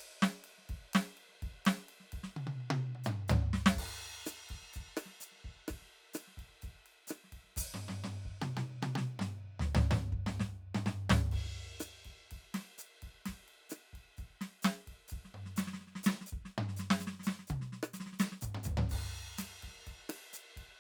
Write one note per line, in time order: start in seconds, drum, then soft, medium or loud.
0.01 ride medium
0.23 snare loud
0.23 ride soft
0.44 ride medium
0.58 snare soft
0.63 snare soft
0.66 kick soft
0.66 snare soft
0.66 ride medium
0.76 kick soft
0.94 snare loud
0.94 ride loud
1.13 snare soft
1.17 ride soft
1.29 snare soft
1.32 snare soft
1.35 snare soft
1.40 kick soft
1.40 snare soft
1.40 ride soft
1.49 kick soft
1.61 kick soft
1.66 snare loud
1.66 ride medium
1.78 snare soft
1.89 ride medium
2.00 snare soft
2.13 kick soft
2.13 ride medium
2.19 kick soft
2.24 snare medium
2.37 high tom medium
2.47 high tom medium
2.61 high tom soft
2.71 high tom loud
2.95 high tom soft
3.04 hi-hat pedal medium
3.04 mid tom loud
3.28 hi-hat pedal medium
3.28 floor tom loud
3.43 high tom soft
3.50 kick soft
3.50 snare medium
3.66 snare loud
3.77 kick soft
3.77 crash medium
3.83 kick soft
4.26 cross-stick medium
4.26 hi-hat pedal loud
4.26 ride medium
4.49 kick soft
4.49 ride medium
4.56 kick soft
4.61 snare soft
4.64 snare soft
4.68 snare soft
4.73 kick soft
4.73 hi-hat pedal medium
4.73 ride medium
4.82 kick soft
4.97 cross-stick medium
4.97 ride medium
5.06 snare soft
5.21 hi-hat pedal medium
5.32 snare soft
5.36 snare soft
5.45 kick soft
5.50 kick soft
5.68 kick soft
5.68 cross-stick medium
5.68 hi-hat pedal soft
5.68 ride medium
5.75 kick soft
5.82 snare soft
6.14 cross-stick medium
6.14 hi-hat pedal medium
6.14 ride medium
6.28 snare soft
6.38 kick soft
6.38 ride soft
6.43 kick soft
6.62 kick soft
6.62 hi-hat pedal soft
6.62 ride medium
6.69 kick soft
6.86 ride soft
7.07 cross-stick medium
7.07 hi-hat pedal medium
7.07 ride medium
7.24 snare soft
7.32 kick soft
7.32 ride soft
7.44 snare soft
7.48 snare soft
7.57 kick soft
7.57 hi-hat pedal loud
7.57 ride medium
7.63 kick soft
7.74 snare medium
7.74 mid tom medium
7.89 snare medium
7.89 mid tom medium
8.04 snare medium
8.04 mid tom medium
8.25 kick soft
8.42 snare medium
8.42 high tom loud
8.57 snare medium
8.57 high tom medium
8.82 snare medium
8.82 high tom loud
8.96 snare medium
8.96 high tom loud
9.20 snare medium
9.20 mid tom medium
9.42 kick soft
9.60 snare medium
9.60 floor tom loud
9.75 snare medium
9.75 floor tom loud
9.91 snare medium
9.91 floor tom loud
10.13 kick soft
10.27 snare medium
10.27 mid tom medium
10.40 snare medium
10.40 mid tom medium
10.75 snare medium
10.75 mid tom loud
10.86 snare medium
10.86 mid tom medium
11.10 snare loud
11.10 floor tom loud
11.32 kick soft
11.32 ride medium
11.39 kick soft
11.46 cross-stick soft
11.80 cross-stick medium
11.80 hi-hat pedal medium
11.80 ride medium
12.05 kick soft
12.05 ride soft
12.11 kick soft
12.31 kick soft
12.31 ride medium
12.55 snare medium
12.55 ride medium
12.78 hi-hat pedal medium
12.78 ride soft
13.02 kick soft
13.02 ride medium
13.08 kick soft
13.26 kick soft
13.26 snare medium
13.26 hi-hat pedal soft
13.26 ride medium
13.34 kick soft
13.48 ride soft
13.70 cross-stick medium
13.70 hi-hat pedal medium
13.70 ride medium
13.93 kick soft
13.93 ride soft
13.98 kick soft
14.17 kick soft
14.17 hi-hat pedal soft
14.17 ride soft
14.24 kick soft
14.41 snare medium
14.41 ride medium
14.63 snare loud
14.63 hi-hat pedal medium
14.63 ride medium
14.88 kick soft
14.88 ride soft
14.92 kick soft
14.92 snare soft
14.97 snare soft
15.08 hi-hat pedal medium
15.08 ride medium
15.12 kick soft
15.25 snare soft
15.35 mid tom medium
15.46 snare soft
15.57 snare loud
15.57 hi-hat pedal medium
15.68 snare medium
15.74 snare medium
15.81 snare soft
15.88 snare soft
15.92 snare soft
15.96 snare medium
16.04 snare loud
16.04 hi-hat pedal loud
16.21 snare soft
16.26 hi-hat pedal medium
16.33 kick soft
16.41 kick soft
16.45 snare soft
16.58 mid tom loud
16.69 snare soft
16.77 snare medium
16.77 hi-hat pedal medium
16.91 snare loud
17.00 snare medium
17.00 hi-hat pedal medium
17.07 snare medium
17.13 snare soft
17.20 snare soft
17.20 hi-hat pedal medium
17.27 snare loud
17.39 snare soft
17.48 kick soft
17.48 hi-hat pedal medium
17.48 high tom medium
17.56 kick soft
17.62 snare soft
17.73 snare soft
17.83 cross-stick medium
17.94 snare soft
17.94 hi-hat pedal medium
18.00 snare medium
18.07 snare soft
18.13 snare soft
18.19 snare loud
18.19 hi-hat pedal loud
18.32 snare soft
18.42 kick soft
18.42 hi-hat pedal medium
18.42 mid tom medium
18.49 kick soft
18.55 mid tom medium
18.64 floor tom medium
18.64 hi-hat pedal medium
18.69 kick soft
18.78 floor tom loud
18.88 kick soft
18.88 hi-hat pedal soft
18.88 crash medium
18.88 floor tom soft
18.98 kick soft
19.38 snare medium
19.38 hi-hat pedal medium
19.38 ride loud
19.63 kick soft
19.63 ride medium
19.68 kick soft
19.68 snare soft
19.86 kick soft
19.86 hi-hat pedal soft
19.86 ride soft
20.10 cross-stick medium
20.10 ride loud
20.33 hi-hat pedal medium
20.33 ride soft
20.57 kick soft
20.57 ride medium
20.62 kick soft